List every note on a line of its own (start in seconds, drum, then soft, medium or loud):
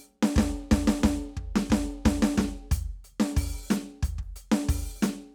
0.01 hi-hat pedal soft
0.23 snare loud
0.36 kick loud
0.36 snare loud
0.57 cross-stick soft
0.57 snare soft
0.71 kick loud
0.71 snare loud
0.87 snare loud
1.03 kick loud
1.03 snare loud
1.37 kick medium
1.37 snare soft
1.56 snare loud
1.70 kick medium
1.70 snare loud
2.05 kick loud
2.05 snare loud
2.22 snare loud
2.37 kick medium
2.37 snare loud
2.71 closed hi-hat loud
2.71 kick loud
3.04 closed hi-hat medium
3.20 snare loud
3.36 open hi-hat loud
3.36 kick loud
3.70 open hi-hat loud
3.70 snare loud
3.70 hi-hat pedal medium
4.03 closed hi-hat medium
4.03 kick loud
4.18 kick medium
4.22 crash soft
4.22 ride soft
4.36 closed hi-hat medium
4.52 snare loud
4.68 open hi-hat loud
4.68 kick loud
5.01 closed hi-hat loud
5.01 snare loud
5.01 hi-hat pedal medium